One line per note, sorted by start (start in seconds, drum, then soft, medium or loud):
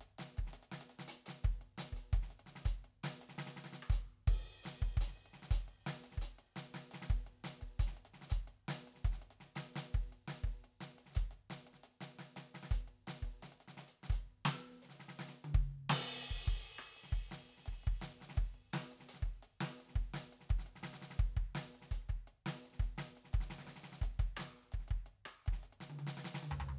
0.01 closed hi-hat medium
0.19 snare medium
0.19 closed hi-hat medium
0.37 kick soft
0.37 closed hi-hat soft
0.47 snare soft
0.54 closed hi-hat medium
0.63 closed hi-hat medium
0.72 snare medium
0.81 closed hi-hat medium
0.90 closed hi-hat medium
0.99 snare soft
1.08 closed hi-hat loud
1.26 closed hi-hat medium
1.26 snare soft
1.44 kick medium
1.44 closed hi-hat medium
1.61 closed hi-hat soft
1.78 closed hi-hat loud
1.78 snare medium
1.93 closed hi-hat medium
1.93 kick soft
2.13 kick medium
2.13 closed hi-hat medium
2.23 snare soft
2.31 closed hi-hat medium
2.40 closed hi-hat soft
2.46 snare soft
2.56 snare soft
2.65 closed hi-hat loud
2.65 kick soft
2.84 closed hi-hat soft
3.04 closed hi-hat loud
3.04 snare medium
3.22 closed hi-hat medium
3.29 snare soft
3.38 snare medium
3.47 snare soft
3.57 snare soft
3.64 snare soft
3.73 snare soft
3.83 cross-stick medium
3.90 closed hi-hat medium
3.90 kick medium
4.28 kick medium
4.28 crash soft
4.63 closed hi-hat medium
4.63 snare medium
4.63 hi-hat pedal medium
4.82 kick soft
4.82 closed hi-hat soft
4.97 closed hi-hat loud
4.97 kick medium
5.08 snare soft
5.17 closed hi-hat soft
5.26 closed hi-hat soft
5.34 snare soft
5.43 snare soft
5.51 closed hi-hat loud
5.51 kick medium
5.68 closed hi-hat soft
5.87 snare medium
5.87 closed hi-hat medium
6.04 closed hi-hat medium
6.12 snare soft
6.18 closed hi-hat loud
6.18 kick soft
6.39 closed hi-hat soft
6.56 snare medium
6.56 closed hi-hat medium
6.74 snare medium
6.74 closed hi-hat medium
6.92 snare soft
6.92 closed hi-hat medium
7.02 snare soft
7.10 kick medium
7.10 closed hi-hat medium
7.27 closed hi-hat soft
7.44 closed hi-hat loud
7.44 snare medium
7.61 kick soft
7.61 closed hi-hat soft
7.80 closed hi-hat loud
7.80 kick medium
7.87 snare soft
7.97 closed hi-hat soft
8.05 closed hi-hat medium
8.14 snare soft
8.22 snare soft
8.30 closed hi-hat loud
8.30 kick soft
8.48 closed hi-hat soft
8.68 closed hi-hat loud
8.68 snare medium
8.88 closed hi-hat soft
8.96 snare soft
9.05 kick soft
9.05 closed hi-hat medium
9.12 snare soft
9.22 closed hi-hat soft
9.31 closed hi-hat medium
9.40 snare soft
9.56 closed hi-hat medium
9.56 snare medium
9.76 open hi-hat loud
9.76 snare medium
9.93 kick soft
9.93 hi-hat pedal soft
9.97 closed hi-hat soft
10.13 closed hi-hat soft
10.28 closed hi-hat medium
10.28 snare medium
10.44 kick soft
10.44 closed hi-hat soft
10.64 closed hi-hat soft
10.81 snare medium
10.81 closed hi-hat medium
10.99 closed hi-hat soft
11.06 snare soft
11.11 snare soft
11.15 closed hi-hat medium
11.15 kick soft
11.31 closed hi-hat medium
11.50 snare medium
11.50 closed hi-hat medium
11.67 closed hi-hat soft
11.74 snare soft
11.84 closed hi-hat medium
12.01 snare medium
12.01 closed hi-hat medium
12.19 snare soft
12.19 closed hi-hat soft
12.37 snare soft
12.37 closed hi-hat medium
12.55 snare soft
12.55 closed hi-hat soft
12.63 snare soft
12.71 closed hi-hat medium
12.71 kick soft
12.88 closed hi-hat soft
13.07 snare medium
13.07 closed hi-hat medium
13.23 kick soft
13.23 closed hi-hat soft
13.43 snare soft
13.43 closed hi-hat medium
13.52 closed hi-hat soft
13.61 closed hi-hat medium
13.68 snare soft
13.77 snare soft
13.77 closed hi-hat medium
13.88 closed hi-hat soft
14.03 snare soft
14.10 open hi-hat medium
14.10 kick soft
14.45 open hi-hat medium
14.45 snare loud
14.82 snare soft
14.82 hi-hat pedal medium
14.89 snare soft
15.00 snare soft
15.09 snare soft
15.17 snare medium
15.17 hi-hat pedal soft
15.28 snare soft
15.45 high tom medium
15.55 kick medium
15.90 snare loud
15.90 crash medium
16.29 kick soft
16.29 closed hi-hat soft
16.35 snare soft
16.46 kick soft
16.46 closed hi-hat soft
16.61 closed hi-hat soft
16.79 cross-stick medium
16.79 closed hi-hat medium
16.97 closed hi-hat soft
17.04 snare soft
17.12 kick soft
17.12 closed hi-hat soft
17.31 snare medium
17.31 closed hi-hat medium
17.49 closed hi-hat soft
17.58 snare soft
17.66 kick soft
17.66 closed hi-hat medium
17.72 snare soft
17.84 kick soft
17.84 closed hi-hat soft
18.02 snare medium
18.02 closed hi-hat medium
18.21 snare soft
18.21 closed hi-hat soft
18.29 snare soft
18.37 kick soft
18.37 closed hi-hat medium
18.54 closed hi-hat soft
18.73 closed hi-hat medium
18.73 snare medium
18.92 closed hi-hat soft
19.00 snare soft
19.09 closed hi-hat medium
19.14 snare soft
19.23 kick soft
19.23 closed hi-hat soft
19.43 closed hi-hat medium
19.61 closed hi-hat medium
19.61 snare medium
19.80 closed hi-hat soft
19.89 snare soft
19.96 kick soft
19.96 closed hi-hat medium
20.14 closed hi-hat medium
20.14 snare medium
20.33 closed hi-hat soft
20.41 snare soft
20.50 kick medium
20.50 closed hi-hat medium
20.59 snare soft
20.66 closed hi-hat soft
20.76 snare soft
20.83 snare medium
20.93 snare soft
21.02 snare soft
21.11 snare soft
21.19 kick medium
21.37 kick soft
21.55 closed hi-hat medium
21.55 snare medium
21.75 closed hi-hat soft
21.82 snare soft
21.91 closed hi-hat medium
21.91 kick soft
22.01 snare soft
22.09 kick soft
22.09 closed hi-hat soft
22.28 closed hi-hat soft
22.46 snare medium
22.46 closed hi-hat medium
22.66 closed hi-hat soft
22.73 snare soft
22.80 kick soft
22.80 closed hi-hat medium
22.98 snare medium
22.98 closed hi-hat medium
23.17 closed hi-hat soft
23.25 snare soft
23.34 kick soft
23.34 closed hi-hat medium
23.41 snare soft
23.50 snare soft
23.59 snare soft
23.65 snare soft
23.65 hi-hat pedal soft
23.76 snare soft
23.84 snare soft
23.92 snare soft
24.02 kick soft
24.02 closed hi-hat medium
24.20 kick soft
24.20 closed hi-hat medium
24.37 open hi-hat medium
24.37 cross-stick medium
24.37 snare medium
24.62 snare soft
24.72 kick soft
24.72 open hi-hat medium
24.80 snare soft
24.88 kick soft
24.88 open hi-hat soft
25.06 open hi-hat soft
25.26 open hi-hat medium
25.26 cross-stick medium
25.46 kick soft
25.46 open hi-hat soft
25.53 snare soft
25.63 open hi-hat medium
25.73 open hi-hat soft
25.81 snare soft
25.90 high tom medium
25.99 high tom medium
26.07 snare medium
26.17 snare soft
26.17 hi-hat pedal soft
26.25 snare medium
26.35 snare medium
26.43 high tom medium
26.50 hi-hat pedal medium
26.50 floor tom medium
26.60 floor tom medium
26.69 floor tom medium